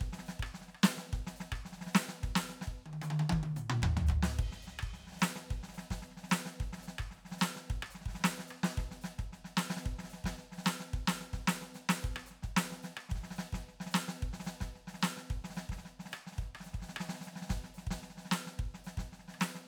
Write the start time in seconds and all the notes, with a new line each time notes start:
0.01 kick, snare
0.07 kick
0.13 snare
0.19 snare
0.26 snare, hi-hat pedal
0.39 kick, cross-stick
0.54 snare
0.61 snare
0.68 snare
0.75 cross-stick
0.83 snare, hi-hat pedal
0.97 snare
1.13 kick, snare
1.19 kick
1.27 snare
1.36 hi-hat pedal
1.40 snare
1.52 kick, cross-stick
1.65 snare
1.72 snare
1.78 snare
1.81 snare
1.87 snare
1.93 snare, hi-hat pedal
2.09 snare
2.22 kick, snare
2.30 kick
2.35 snare
2.47 snare, hi-hat pedal
2.61 snare
2.67 kick
2.86 high tom
2.93 high tom
3.02 hi-hat pedal, high tom
3.10 high tom
3.19 high tom
3.32 kick
3.38 kick
3.43 high tom
3.56 hi-hat pedal, mid tom
3.70 mid tom
3.82 kick, floor tom
3.97 floor tom
4.07 kick, hi-hat pedal, floor tom
4.16 kick
4.23 snare
4.39 kick, ride
4.52 kick, snare
4.62 hi-hat pedal
4.67 snare
4.79 kick, cross-stick
4.93 snare
4.99 snare
5.07 snare
5.12 snare
5.16 snare, hi-hat pedal
5.22 snare
5.36 snare
5.50 kick, snare
5.63 snare
5.68 snare
5.73 snare, hi-hat pedal
5.78 snare
5.90 kick, snare
6.02 snare
6.11 snare
6.17 snare
6.24 snare
6.29 snare, hi-hat pedal
6.46 snare
6.60 kick, snare
6.66 kick
6.73 snare
6.78 snare
6.82 hi-hat pedal
6.88 snare
6.99 kick, cross-stick
7.11 snare
7.17 snare
7.22 snare
7.25 snare
7.32 snare
7.37 snare, hi-hat pedal
7.41 snare
7.56 snare
7.70 kick, snare
7.76 kick
7.82 cross-stick
7.90 hi-hat pedal
7.95 snare
8.01 snare
8.06 kick, snare
8.15 snare
8.20 snare
8.24 snare
8.39 snare
8.47 cross-stick, hi-hat pedal
8.63 snare
8.77 kick, snare
8.84 kick
8.91 snare
9.01 snare, hi-hat pedal
9.18 kick, snare
9.33 snare
9.45 snare
9.57 snare, hi-hat pedal
9.70 snare
9.77 snare
9.85 kick, snare
9.92 kick
9.99 snare
10.04 snare
10.10 snare, hi-hat pedal
10.13 snare
10.24 kick, snare
10.38 snare
10.45 snare
10.50 snare
10.52 snare
10.58 snare
10.64 snare, hi-hat pedal
10.66 snare
10.80 snare
10.93 kick, snare
11.00 kick
11.07 snare
11.16 hi-hat pedal
11.20 snare
11.33 kick, snare
11.47 snare
11.62 snare
11.74 snare, hi-hat pedal
11.89 snare
12.04 kick, snare
12.10 kick
12.16 cross-stick
12.26 hi-hat pedal
12.30 snare
12.43 kick, snare
12.57 snare
12.72 snare
12.82 snare, hi-hat pedal
12.97 cross-stick
13.09 kick, snare
13.15 kick, snare
13.20 snare
13.23 snare
13.36 snare, hi-hat pedal
13.53 kick, snare
13.68 snare
13.80 snare
13.86 snare
13.91 snare, hi-hat pedal
14.08 snare
14.22 kick, snare
14.29 kick
14.33 snare
14.40 snare
14.44 snare, hi-hat pedal
14.60 kick, snare
14.75 snare
14.87 snare
14.94 snare
15.00 snare, hi-hat pedal
15.03 snare
15.17 snare
15.30 kick, snare
15.36 kick
15.44 snare
15.50 snare
15.55 snare, hi-hat pedal
15.69 kick, snare
15.74 kick, snare
15.85 snare
15.99 snare
16.05 snare
16.11 cross-stick, snare, hi-hat pedal
16.27 snare
16.32 snare
16.36 kick, snare
16.41 snare
16.55 cross-stick
16.60 snare, hi-hat pedal
16.66 snare
16.73 kick, snare
16.79 snare
16.82 snare
16.89 snare
16.96 cross-stick, snare
17.09 snare
17.14 snare
17.21 snare, hi-hat pedal
17.27 snare
17.33 snare
17.36 snare
17.42 snare
17.47 snare
17.50 kick, snare
17.56 kick
17.64 snare
17.70 snare
17.74 snare, hi-hat pedal
17.87 kick, snare
17.92 kick
18.03 snare
18.10 snare
18.15 snare
18.17 snare
18.25 snare
18.31 snare, hi-hat pedal
18.47 snare
18.59 kick, snare
18.65 kick
18.74 snare
18.84 snare, hi-hat pedal
18.97 kick, snare
19.03 kick
19.12 snare
19.19 snare
19.24 snare
19.28 snare
19.34 cross-stick
19.39 snare, hi-hat pedal
19.41 snare
19.55 snare